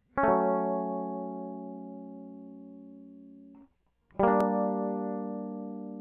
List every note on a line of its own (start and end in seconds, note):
0.18 3.67 C#4
0.24 3.64 A3
0.29 3.60 F#3
4.20 6.01 G3
4.20 6.01 A#3
4.28 6.01 D4